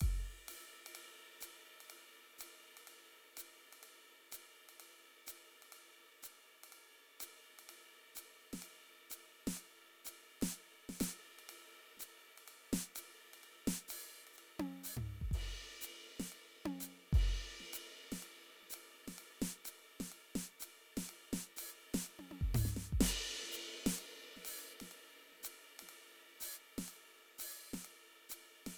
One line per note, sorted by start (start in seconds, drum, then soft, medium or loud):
0.00 kick soft
0.00 ride loud
0.00 crash medium
0.48 hi-hat pedal medium
0.48 ride loud
0.86 ride loud
0.95 ride loud
1.40 hi-hat pedal medium
1.40 ride loud
1.80 ride medium
1.86 hi-hat pedal soft
1.86 ride medium
2.38 hi-hat pedal medium
2.38 ride loud
2.77 ride medium
2.87 ride medium
3.37 hi-hat pedal loud
3.37 ride loud
3.73 ride medium
3.83 ride medium
4.31 hi-hat pedal medium
4.31 ride loud
4.69 ride medium
4.80 ride medium
5.26 hi-hat pedal medium
5.26 ride loud
5.62 ride medium
5.72 ride medium
6.22 hi-hat pedal medium
6.22 ride medium
6.63 ride medium
6.72 ride medium
7.20 hi-hat pedal loud
7.20 ride loud
7.59 ride medium
7.69 ride medium
8.15 hi-hat pedal medium
8.15 ride loud
8.53 snare soft
8.53 ride medium
8.62 hi-hat pedal soft
8.62 ride medium
9.10 hi-hat pedal loud
9.10 ride medium
9.47 snare medium
9.47 ride medium
9.56 hi-hat pedal soft
9.56 ride medium
10.04 hi-hat pedal loud
10.04 ride loud
10.41 snare medium
10.41 ride medium
10.51 hi-hat pedal soft
10.51 ride medium
10.89 snare soft
11.00 snare medium
11.00 hi-hat pedal loud
11.00 ride loud
11.39 ride medium
11.49 ride loud
11.96 snare soft
11.96 hi-hat pedal loud
12.01 ride medium
12.38 ride medium
12.45 hi-hat pedal soft
12.45 ride medium
12.73 snare medium
12.95 hi-hat pedal loud
12.95 ride loud
13.33 ride medium
13.43 ride medium
13.67 snare medium
13.88 hi-hat pedal loud
13.88 ride loud
14.27 ride medium
14.32 hi-hat pedal soft
14.38 ride medium
14.59 high tom medium
14.83 hi-hat pedal loud
14.83 ride medium
14.96 floor tom medium
15.21 kick soft
15.31 kick soft
15.31 crash soft
15.31 ride medium
15.81 hi-hat pedal loud
15.81 ride medium
16.19 snare soft
16.19 ride medium
16.28 hi-hat pedal soft
16.28 ride medium
16.65 high tom medium
16.80 hi-hat pedal loud
16.80 ride medium
17.13 kick medium
17.13 ride medium
17.60 snare soft
17.73 hi-hat pedal loud
17.73 ride loud
18.12 snare soft
18.12 ride medium
18.20 hi-hat pedal soft
18.20 ride medium
18.62 snare soft
18.70 hi-hat pedal loud
18.70 ride loud
19.07 snare soft
19.07 ride medium
19.17 hi-hat pedal soft
19.17 ride medium
19.41 snare medium
19.65 hi-hat pedal loud
19.65 ride loud
20.00 snare soft
20.00 ride medium
20.09 hi-hat pedal soft
20.09 ride medium
20.35 snare medium
20.60 hi-hat pedal loud
20.60 ride loud
20.97 snare medium
20.97 ride medium
21.09 ride medium
21.33 snare medium
21.56 hi-hat pedal loud
21.56 ride loud
21.77 hi-hat pedal soft
21.94 snare medium
21.94 ride medium
22.06 ride medium
22.19 high tom soft
22.31 high tom soft
22.41 kick soft
22.54 floor tom medium
22.54 hi-hat pedal loud
22.65 snare soft
22.76 snare soft
22.92 kick soft
23.00 snare medium
23.00 ride loud
23.42 snare soft
23.52 hi-hat pedal loud
23.52 ride medium
23.86 snare medium
23.86 ride loud
23.98 hi-hat pedal soft
23.98 ride medium
24.36 snare soft
24.45 hi-hat pedal loud
24.45 ride loud
24.80 snare soft
24.80 ride medium
24.91 ride medium
25.31 snare soft
25.40 snare soft
25.40 hi-hat pedal loud
25.45 ride loud
25.79 snare soft
25.79 ride loud
25.89 ride medium
26.40 hi-hat pedal loud
26.40 ride medium
26.78 snare soft
26.78 ride medium
26.86 hi-hat pedal soft
26.86 ride medium
27.38 hi-hat pedal loud
27.38 ride medium
27.73 snare soft
27.73 ride medium
27.83 hi-hat pedal soft
27.83 ride medium
28.29 hi-hat pedal loud
28.29 ride loud
28.66 snare soft
28.66 ride loud
28.74 hi-hat pedal soft